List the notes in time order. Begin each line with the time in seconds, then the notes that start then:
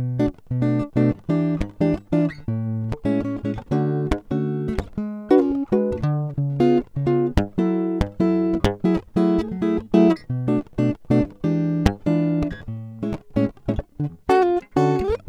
0.00 B2
0.20 A3 D4 F#4
0.52 B2
0.63 A3 D4 F#4
0.80 D4
0.97 B2 A3 D4 F#4
1.30 E3 D4 G4
1.62 G#2
1.81 E3 D4 G4
2.13 E3 D4 F4
2.49 A2
3.06 A2 G#3 C#4 E4
3.19 A2 G#3 E4
3.26 C#4
3.44 A2 G#3 C#4 E4
3.72 A2 D3 A3 C#4 F#4
4.32 D3 A3 C#4 F#4
4.69 A3
4.99 G#3
5.31 C#4 F#4 B4
5.41 F4 A#4
5.73 G#3 D4 F#4 B4
5.93 D4
6.04 D3
6.39 C#3
6.61 B3 F4 G#4
6.98 C#3
7.07 B3 F4 G#4
7.38 G2
7.59 F#3 E4 A4
8.02 G#2
8.21 F#3 E4 A4
8.65 G#2
8.85 F#3 E4 G#4
9.17 F#3 A3 E4 G#4
9.53 F#3
9.63 A3 E4 G#4
9.78 A3
9.95 F#3 A3 E4 G#4
10.31 B2
10.49 A3 D4 F#4
10.79 B2 A3 D4 F#4
11.11 B2 A3 D4 F#4
11.45 E3 G#3 D4 G4
11.87 G2
12.07 E3 D4 F4
12.69 A2
13.04 G#3 E4
13.37 A2 G#3 C#4 E4
13.69 A2 G#3 E4
14.01 D3
14.30 C#4 F#4 A4
14.40 F4 G#4
14.77 D3 C#4 F#4 A4